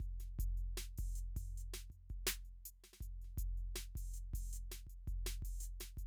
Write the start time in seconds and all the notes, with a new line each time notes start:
0.01 kick, closed hi-hat
0.20 closed hi-hat, snare
0.39 closed hi-hat, kick
0.58 closed hi-hat
0.78 snare, closed hi-hat
0.98 open hi-hat, kick
1.16 hi-hat pedal
1.37 open hi-hat, kick
1.56 hi-hat pedal, open hi-hat
1.74 snare, closed hi-hat
1.91 kick, closed hi-hat
2.10 kick, closed hi-hat
2.27 closed hi-hat, snare
2.45 closed hi-hat
2.66 closed hi-hat
2.84 snare, closed hi-hat
2.94 snare
3.01 kick, snare, closed hi-hat
3.22 snare, closed hi-hat
3.38 closed hi-hat, kick
3.58 closed hi-hat
3.76 snare, closed hi-hat
3.96 kick, open hi-hat
4.14 hi-hat pedal
4.34 kick, open hi-hat
4.53 hi-hat pedal
4.72 snare, closed hi-hat
4.87 kick, closed hi-hat
5.08 kick, closed hi-hat
5.27 snare, closed hi-hat
5.43 kick, open hi-hat
5.61 closed hi-hat, hi-hat pedal
5.81 snare, closed hi-hat
5.98 kick, closed hi-hat